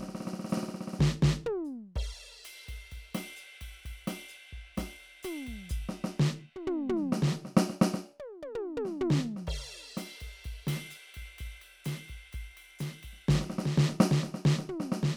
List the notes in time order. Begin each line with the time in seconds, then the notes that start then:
0.01 snare
0.03 snare
0.09 snare
0.15 snare
0.21 snare
0.26 snare
0.27 snare
0.34 snare
0.40 snare
0.45 snare
0.50 snare, hi-hat pedal
0.58 snare
0.63 snare
0.69 snare
0.75 snare
0.81 snare
0.88 snare
0.93 snare, hi-hat pedal
1.00 kick, snare
1.23 kick, snare
1.46 mid tom
1.65 hi-hat pedal
1.96 kick, crash
2.02 kick
2.45 hi-hat pedal, ride
2.69 kick, ride
2.74 kick
2.91 kick, hi-hat pedal, ride
2.97 kick
3.15 snare, ride
3.37 hi-hat pedal
3.61 kick, ride
3.83 kick, hi-hat pedal, ride
3.91 kick
4.08 snare, ride
4.29 hi-hat pedal
4.53 kick, ride
4.58 kick
4.75 kick, snare, hi-hat pedal, ride
4.82 kick
5.00 ride
5.23 hi-hat pedal, ride, floor tom
5.47 kick, ride
5.53 kick
5.70 kick, hi-hat pedal, ride
5.89 snare
6.04 snare
6.20 snare
6.56 floor tom
6.67 floor tom
6.89 floor tom
6.97 snare
7.13 snare
7.23 snare
7.28 snare
7.32 snare
7.45 snare
7.57 snare
7.70 snare
7.82 snare
7.94 snare
8.20 high tom
8.43 high tom
8.55 mid tom
8.77 mid tom
8.85 snare
9.01 kick, floor tom
9.11 snare
9.37 snare
9.47 kick, crash
9.59 high tom
9.97 snare, hi-hat pedal, ride
10.12 snare
10.21 kick, ride
10.27 kick
10.44 kick, hi-hat pedal, ride
10.67 snare, ride
10.77 snare
10.91 hi-hat pedal, ride
11.14 kick, ride
11.22 kick
11.39 kick, hi-hat pedal, ride
11.46 kick
11.62 ride
11.85 snare, hi-hat pedal, ride
12.09 kick, ride
12.15 kick
12.33 kick, hi-hat pedal, ride
12.57 ride
12.79 snare, hi-hat pedal, ride
13.03 kick, ride
13.13 snare
13.29 kick, snare, hi-hat pedal
13.35 snare
13.41 snare
13.50 snare
13.59 snare
13.66 snare
13.78 snare
13.89 snare
14.01 snare
14.12 snare
14.24 snare
14.35 snare
14.46 snare
14.59 snare
14.69 floor tom
14.80 snare
14.92 snare
15.03 snare